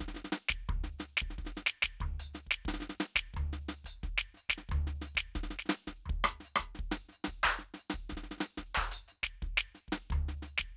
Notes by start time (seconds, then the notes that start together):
0.01 kick, snare
0.09 snare
0.15 snare
0.17 snare
0.33 snare, hi-hat pedal
0.49 kick, snare
0.70 kick, floor tom
0.84 snare
0.99 snare, hi-hat pedal
1.18 snare
1.22 kick
1.31 snare
1.39 kick, snare
1.45 snare
1.47 snare
1.58 snare
1.67 snare, hi-hat pedal
1.83 kick, snare
2.01 kick, floor tom
2.20 open hi-hat
2.34 snare, hi-hat pedal
2.47 kick
2.52 snare
2.66 kick, snare
2.74 snare
2.81 snare
2.82 snare
2.90 snare
3.01 snare, hi-hat pedal
3.16 kick, snare
3.35 kick, floor tom
3.54 snare
3.69 snare, hi-hat pedal
3.85 closed hi-hat, kick
4.04 kick, snare
4.18 snare
4.35 snare, hi-hat pedal
4.50 kick, snare
4.58 snare
4.70 kick, floor tom
4.88 snare
5.02 snare, hi-hat pedal
5.16 kick, snare
5.36 kick, snare
5.44 snare
5.51 snare
5.60 snare
5.66 snare
5.70 snare
5.75 hi-hat pedal
5.88 kick, snare
6.06 kick, floor tom
6.25 cross-stick
6.41 snare
6.45 hi-hat pedal
6.56 kick, cross-stick
6.76 snare
6.80 kick
6.92 snare
7.09 snare, hi-hat pedal
7.25 kick, snare
7.44 kick, percussion
7.59 snare
7.75 snare, hi-hat pedal
7.91 snare
7.95 kick
8.10 kick, snare
8.18 snare
8.24 snare
8.32 snare
8.38 snare
8.41 snare, hi-hat pedal
8.58 kick, snare
8.75 kick, percussion
8.92 closed hi-hat
9.09 hi-hat pedal
9.13 snare
9.24 kick, snare
9.43 kick, snare
9.58 snare
9.75 snare, hi-hat pedal
9.89 kick
9.93 snare
10.11 kick, floor tom
10.29 snare
10.43 snare, hi-hat pedal
10.58 kick, snare